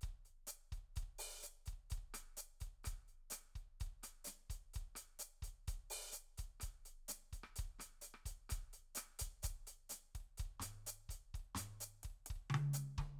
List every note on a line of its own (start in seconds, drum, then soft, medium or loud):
0.01 closed hi-hat soft
0.01 kick soft
0.08 kick soft
0.25 closed hi-hat soft
0.47 cross-stick soft
0.47 hi-hat pedal medium
0.72 closed hi-hat soft
0.72 kick soft
0.77 kick soft
0.96 closed hi-hat soft
0.96 kick soft
1.02 kick soft
1.19 open hi-hat medium
1.43 open hi-hat soft
1.43 hi-hat pedal medium
1.66 closed hi-hat soft
1.66 kick soft
1.73 kick soft
1.90 closed hi-hat soft
1.90 kick soft
1.97 kick soft
2.14 closed hi-hat medium
2.14 cross-stick soft
2.14 snare soft
2.37 hi-hat pedal medium
2.60 closed hi-hat soft
2.60 kick soft
2.67 kick soft
2.84 closed hi-hat medium
2.84 kick soft
2.84 cross-stick soft
2.84 hi-hat pedal soft
2.93 kick soft
3.08 closed hi-hat soft
3.30 closed hi-hat soft
3.30 cross-stick soft
3.30 snare soft
3.30 hi-hat pedal medium
3.55 closed hi-hat soft
3.55 kick soft
3.80 closed hi-hat soft
3.80 kick soft
3.86 kick soft
4.03 closed hi-hat medium
4.03 cross-stick soft
4.25 closed hi-hat medium
4.25 snare soft
4.25 hi-hat pedal medium
4.50 closed hi-hat soft
4.50 kick soft
4.55 kick soft
4.74 closed hi-hat soft
4.74 kick soft
4.81 kick soft
4.95 closed hi-hat medium
4.95 cross-stick soft
5.19 hi-hat pedal medium
5.42 closed hi-hat soft
5.42 kick soft
5.48 kick soft
5.68 closed hi-hat soft
5.68 kick soft
5.74 kick soft
5.90 open hi-hat medium
6.13 closed hi-hat soft
6.13 hi-hat pedal medium
6.38 closed hi-hat soft
6.38 kick soft
6.44 kick soft
6.60 closed hi-hat medium
6.60 kick soft
6.60 cross-stick soft
6.68 kick soft
6.85 closed hi-hat soft
7.08 snare soft
7.08 hi-hat pedal medium
7.33 closed hi-hat soft
7.33 kick soft
7.33 snare soft
7.43 cross-stick soft
7.43 snare soft
7.56 closed hi-hat soft
7.56 kick soft
7.64 kick soft
7.79 closed hi-hat medium
7.79 cross-stick soft
7.79 snare soft
8.01 closed hi-hat soft
8.01 snare soft
8.01 hi-hat pedal medium
8.14 cross-stick soft
8.14 snare soft
8.26 closed hi-hat soft
8.26 kick soft
8.31 kick soft
8.49 closed hi-hat medium
8.49 kick soft
8.49 cross-stick soft
8.49 snare soft
8.58 kick soft
8.73 open hi-hat soft
8.95 closed hi-hat soft
8.95 cross-stick medium
8.95 snare soft
8.95 hi-hat pedal medium
9.19 closed hi-hat medium
9.19 kick soft
9.27 kick soft
9.43 open hi-hat soft
9.43 kick soft
9.43 hi-hat pedal medium
9.50 kick soft
9.67 closed hi-hat soft
9.89 closed hi-hat medium
9.89 snare soft
9.89 hi-hat pedal medium
10.15 kick soft
10.15 closed hi-hat soft
10.20 kick soft
10.38 closed hi-hat soft
10.38 kick soft
10.45 kick soft
10.60 closed hi-hat medium
10.60 cross-stick soft
10.60 snare soft
10.60 mid tom soft
10.87 hi-hat pedal medium
11.09 closed hi-hat soft
11.09 kick soft
11.14 kick soft
11.34 kick soft
11.34 closed hi-hat soft
11.39 kick soft
11.55 closed hi-hat medium
11.55 snare soft
11.55 mid tom soft
11.59 cross-stick soft
11.81 hi-hat pedal medium
12.03 kick soft
12.03 closed hi-hat soft
12.10 kick soft
12.26 kick soft
12.26 closed hi-hat soft
12.36 kick soft
12.50 high tom medium
12.54 high tom loud
12.73 hi-hat pedal medium
12.73 high tom soft
12.98 kick soft
12.98 high tom medium
13.03 kick soft